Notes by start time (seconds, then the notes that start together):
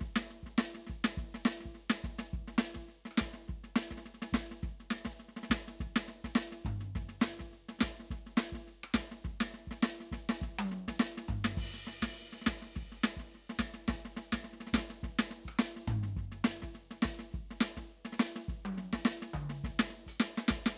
0.01 kick, snare
0.08 kick
0.16 snare
0.28 snare, hi-hat pedal
0.44 kick, snare
0.59 snare
0.75 snare
0.87 kick, snare, hi-hat pedal
1.05 snare
1.18 kick, snare
1.24 kick
1.35 snare
1.45 snare, hi-hat pedal
1.61 snare
1.66 kick
1.75 snare
1.90 snare
2.04 kick, snare, hi-hat pedal
2.11 kick
2.19 snare
2.34 kick
2.41 kick
2.48 snare
2.59 snare, hi-hat pedal
2.75 kick, snare
2.89 snare
3.06 snare
3.12 cross-stick
3.18 kick, snare, hi-hat pedal
3.34 snare
3.49 kick, snare
3.56 kick
3.64 snare
3.76 snare, hi-hat pedal
3.91 kick, snare
3.98 snare
4.06 snare
4.15 snare
4.22 snare
4.33 kick, snare, hi-hat pedal
4.39 kick
4.52 snare
4.63 kick, snare
4.71 kick
4.81 snare
4.91 snare, hi-hat pedal
5.05 kick, snare
5.20 snare
5.29 snare
5.37 snare
5.44 snare
5.50 kick, snare, hi-hat pedal
5.68 snare
5.81 kick, snare
5.87 kick
5.96 snare
6.06 snare, hi-hat pedal
6.25 kick, snare
6.36 snare
6.53 snare
6.64 kick, floor tom, hi-hat pedal
6.75 kick
6.81 snare
6.96 kick, snare
7.03 kick
7.09 snare
7.20 snare, hi-hat pedal
7.40 kick, snare
7.53 snare
7.69 snare
7.80 kick, snare, hi-hat pedal
7.89 kick
8.00 snare
8.11 kick, snare
8.17 kick
8.27 snare
8.37 snare, hi-hat pedal
8.53 kick, snare
8.68 snare
8.84 cross-stick
8.94 kick, snare, hi-hat pedal
9.00 kick
9.12 snare
9.25 kick, snare
9.31 kick
9.36 kick
9.41 snare
9.51 snare, hi-hat pedal
9.68 kick, snare
9.83 snare
10.01 snare
10.12 kick, snare, hi-hat pedal
10.18 kick
10.30 snare
10.42 kick, snare
10.49 kick
10.54 kick
10.59 high tom
10.67 hi-hat pedal
10.72 snare
10.88 kick, snare
11.00 snare
11.18 snare
11.28 kick, floor tom, hi-hat pedal
11.36 kick
11.45 snare
11.58 kick, crash
11.69 kick
11.71 kick, snare
11.86 snare, hi-hat pedal
12.03 kick, snare
12.15 snare
12.23 snare
12.29 snare
12.33 snare
12.42 snare, hi-hat pedal
12.47 kick, snare
12.62 snare
12.76 kick, snare
12.83 kick
12.92 snare
13.03 snare, hi-hat pedal
13.17 kick, snare
13.35 snare
13.50 snare
13.59 kick, snare, hi-hat pedal
13.74 snare
13.88 kick, snare
13.96 kick
14.06 snare
14.17 snare, hi-hat pedal
14.33 kick, snare
14.45 snare
14.54 snare
14.61 snare
14.67 snare
14.73 kick, snare, hi-hat pedal
14.78 snare
14.90 snare
15.04 kick, snare
15.10 kick
15.19 snare
15.29 snare, hi-hat pedal
15.46 kick, cross-stick
15.59 snare
15.77 snare
15.88 kick, floor tom, hi-hat pedal
15.94 kick
15.97 kick
16.04 snare
16.17 kick, snare
16.24 kick
16.32 snare
16.45 snare, hi-hat pedal
16.63 kick, snare
16.75 snare
16.91 snare
17.03 kick, snare, hi-hat pedal
17.19 snare
17.32 kick, snare
17.41 kick
17.51 snare
17.61 snare, hi-hat pedal
17.78 kick, snare
17.90 snare
17.99 snare
18.05 snare
18.13 snare
18.18 snare, hi-hat pedal
18.36 snare
18.49 kick, snare
18.55 kick
18.66 high tom
18.72 hi-hat pedal
18.78 snare
18.93 kick, snare
19.06 snare
19.23 snare
19.33 kick, hi-hat pedal, mid tom
19.41 kick
19.50 snare
19.65 kick, snare
19.71 kick
19.80 snare
19.89 snare, hi-hat pedal
20.07 open hi-hat, kick
20.20 snare
20.38 snare
20.49 kick, snare, hi-hat pedal
20.57 kick
20.60 kick
20.66 snare